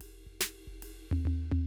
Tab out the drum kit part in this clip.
RD |x--x--x-----|
SD |---o--------|
T1 |--------oo-o|
FT |--------oo-o|
BD |o-o--o------|